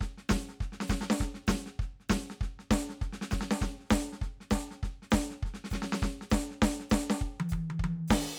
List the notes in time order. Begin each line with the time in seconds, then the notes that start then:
0.01 kick, snare
0.18 snare
0.29 kick, snare, hi-hat pedal
0.49 snare
0.61 kick, snare
0.72 snare
0.81 snare
0.88 kick, snare, hi-hat pedal
1.01 snare
1.10 snare
1.21 kick, snare
1.35 snare
1.47 kick, snare, hi-hat pedal
1.66 snare
1.79 kick, snare
2.00 snare
2.09 kick, snare, hi-hat pedal
2.30 snare
2.41 kick, snare
2.59 snare
2.71 kick, snare, hi-hat pedal
2.90 snare
3.02 kick, snare
3.13 snare
3.22 snare
3.31 kick, snare, hi-hat pedal
3.41 snare
3.51 snare
3.62 kick, snare
3.80 snare
3.84 snare
3.90 kick, snare, hi-hat pedal
4.13 snare
4.22 kick, snare
4.41 snare
4.51 kick, snare, hi-hat pedal
4.71 snare
4.83 kick, snare
5.02 snare
5.11 kick, snare, hi-hat pedal
5.31 snare
5.43 kick, snare
5.54 snare
5.64 snare
5.71 kick, snare, hi-hat pedal
5.82 snare
5.93 snare
6.02 kick, snare
6.21 snare
6.30 kick, snare, hi-hat pedal
6.51 snare
6.62 kick, snare
6.80 snare
6.90 kick, snare, hi-hat pedal
7.10 snare
7.21 kick
7.40 high tom
7.49 kick, hi-hat pedal
7.54 high tom
7.70 high tom
7.80 kick
7.84 high tom
8.08 kick, snare, hi-hat pedal, crash